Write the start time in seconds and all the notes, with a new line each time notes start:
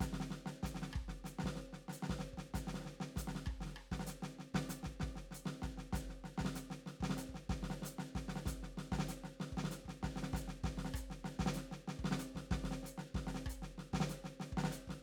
0.01 kick, snare, hi-hat pedal
0.13 snare
0.21 snare
0.31 snare
0.46 snare
0.64 kick, snare, hi-hat pedal
0.75 snare
0.83 snare
0.89 snare
0.94 kick, cross-stick
1.04 kick
1.09 snare
1.25 snare, hi-hat pedal
1.39 snare
1.44 kick, snare
1.56 snare
1.73 snare
1.89 snare
1.93 hi-hat pedal
2.03 snare
2.10 kick, snare
2.20 snare
2.34 kick
2.38 snare
2.55 kick, snare, hi-hat pedal
2.68 snare
2.75 snare
2.81 snare
2.86 snare
3.01 snare
3.17 kick, snare, hi-hat pedal
3.28 snare
3.36 snare
3.47 kick, cross-stick
3.56 kick
3.61 snare
3.66 snare
3.71 snare
3.77 cross-stick
3.92 kick, snare
4.00 snare
4.07 snare, hi-hat pedal
4.23 snare
4.39 snare
4.55 kick, snare
4.70 snare, hi-hat pedal
4.84 kick, snare
5.01 kick, snare
5.16 snare
5.32 snare, hi-hat pedal
5.46 snare
5.63 kick, snare
5.78 snare
5.93 kick, snare, hi-hat pedal
6.10 snare
6.25 snare
6.38 kick, snare
6.45 snare
6.56 snare, hi-hat pedal
6.71 snare
6.87 snare
7.01 kick, snare
7.10 snare
7.18 snare, hi-hat pedal
7.30 kick
7.35 snare
7.50 kick, snare
7.63 snare
7.71 snare
7.83 snare, hi-hat pedal
7.99 snare
8.16 kick, snare
8.29 snare
8.36 snare
8.46 kick, snare, hi-hat pedal
8.63 snare
8.78 snare
8.92 kick, snare
8.99 snare
9.09 snare, hi-hat pedal
9.24 snare
9.41 snare
9.53 kick
9.58 snare
9.64 snare
9.71 snare, hi-hat pedal
9.86 kick, snare
10.04 kick, snare
10.17 snare
10.23 snare
10.34 kick, snare, hi-hat pedal
10.48 snare
10.64 kick, snare
10.78 snare
10.85 snare
10.95 kick, cross-stick, hi-hat pedal
11.11 snare
11.25 snare
11.40 kick, snare
11.47 snare
11.54 snare, hi-hat pedal
11.72 snare
11.88 snare
11.99 kick
12.05 snare
12.12 snare
12.19 snare, hi-hat pedal
12.35 kick, snare
12.52 kick, snare
12.64 snare
12.72 snare
12.84 snare, hi-hat pedal
12.98 snare
13.15 kick, snare
13.27 snare
13.35 snare
13.47 kick, cross-stick, hi-hat pedal
13.63 snare
13.79 snare
13.94 kick, snare
14.01 snare
14.10 snare, hi-hat pedal
14.25 snare
14.40 snare
14.53 kick
14.58 snare
14.64 snare
14.71 snare, hi-hat pedal
14.88 kick, snare